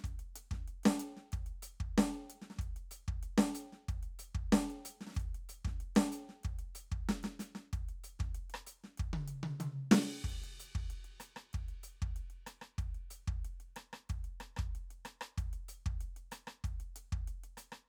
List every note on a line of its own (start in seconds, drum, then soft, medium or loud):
0.01 kick medium
0.01 snare soft
0.06 closed hi-hat soft
0.20 closed hi-hat soft
0.36 closed hi-hat medium
0.52 kick medium
0.52 snare soft
0.68 closed hi-hat soft
0.84 snare medium
0.84 closed hi-hat soft
1.00 closed hi-hat medium
1.17 snare soft
1.33 kick medium
1.33 closed hi-hat soft
1.47 closed hi-hat soft
1.63 closed hi-hat medium
1.81 kick medium
1.98 snare medium
1.98 closed hi-hat soft
2.15 closed hi-hat soft
2.30 closed hi-hat medium
2.42 snare soft
2.51 snare soft
2.57 kick medium
2.57 snare soft
2.62 closed hi-hat soft
2.77 closed hi-hat soft
2.92 closed hi-hat medium
3.09 kick medium
3.23 closed hi-hat soft
3.38 snare medium
3.38 closed hi-hat soft
3.55 closed hi-hat medium
3.73 snare soft
3.89 kick medium
3.89 closed hi-hat soft
4.03 closed hi-hat soft
4.20 closed hi-hat medium
4.35 kick medium
4.53 snare medium
4.53 closed hi-hat soft
4.71 closed hi-hat soft
4.86 open hi-hat medium
5.01 snare soft
5.07 snare soft
5.11 snare soft
5.14 kick medium
5.14 snare soft
5.14 hi-hat pedal soft
5.20 closed hi-hat soft
5.35 closed hi-hat soft
5.50 closed hi-hat medium
5.65 kick medium
5.65 snare soft
5.81 closed hi-hat soft
5.96 snare loud
5.96 closed hi-hat soft
6.13 closed hi-hat medium
6.30 snare soft
6.44 kick medium
6.44 closed hi-hat soft
6.59 closed hi-hat soft
6.76 closed hi-hat medium
6.92 kick medium
7.09 snare medium
7.09 closed hi-hat soft
7.24 snare medium
7.24 closed hi-hat soft
7.40 closed hi-hat medium
7.40 snare soft
7.56 snare soft
7.74 kick medium
7.74 closed hi-hat soft
7.89 closed hi-hat soft
8.04 closed hi-hat medium
8.20 kick medium
8.20 snare soft
8.35 closed hi-hat soft
8.50 closed hi-hat soft
8.55 cross-stick medium
8.67 closed hi-hat medium
8.84 snare soft
8.98 kick medium
8.98 closed hi-hat soft
9.14 high tom medium
9.28 closed hi-hat medium
9.44 high tom medium
9.61 closed hi-hat medium
9.61 high tom medium
9.92 snare loud
9.92 crash medium
10.25 kick medium
10.30 closed hi-hat soft
10.44 closed hi-hat soft
10.60 closed hi-hat medium
10.76 kick medium
10.91 closed hi-hat soft
11.05 closed hi-hat soft
11.21 closed hi-hat medium
11.21 cross-stick medium
11.37 cross-stick medium
11.54 kick medium
11.54 closed hi-hat soft
11.69 closed hi-hat soft
11.84 closed hi-hat medium
12.03 kick medium
12.17 closed hi-hat soft
12.31 closed hi-hat soft
12.47 cross-stick medium
12.47 closed hi-hat medium
12.62 cross-stick medium
12.79 kick medium
12.79 closed hi-hat soft
12.95 closed hi-hat soft
13.11 closed hi-hat medium
13.28 kick medium
13.45 closed hi-hat soft
13.61 closed hi-hat soft
13.77 cross-stick medium
13.77 closed hi-hat soft
13.94 cross-stick medium
14.10 kick medium
14.10 closed hi-hat soft
14.25 closed hi-hat soft
14.41 cross-stick medium
14.41 closed hi-hat soft
14.57 kick medium
14.57 cross-stick medium
14.76 closed hi-hat soft
14.91 closed hi-hat soft
15.06 cross-stick medium
15.06 closed hi-hat soft
15.22 cross-stick medium
15.38 kick medium
15.38 closed hi-hat soft
15.54 closed hi-hat soft
15.69 closed hi-hat medium
15.87 kick medium
16.01 closed hi-hat soft
16.17 closed hi-hat soft
16.32 closed hi-hat medium
16.32 cross-stick medium
16.48 cross-stick medium
16.65 kick medium
16.65 closed hi-hat soft
16.81 closed hi-hat soft
16.97 closed hi-hat medium
17.13 kick medium
17.28 closed hi-hat soft
17.44 closed hi-hat soft
17.58 closed hi-hat medium
17.58 cross-stick medium
17.73 cross-stick medium